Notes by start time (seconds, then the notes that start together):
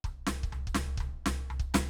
0.04 kick, floor tom
0.27 snare, floor tom
0.43 kick
0.52 floor tom
0.67 kick
0.74 snare, floor tom
0.97 kick, floor tom
1.26 snare, floor tom
1.50 floor tom
1.59 kick
1.74 snare, floor tom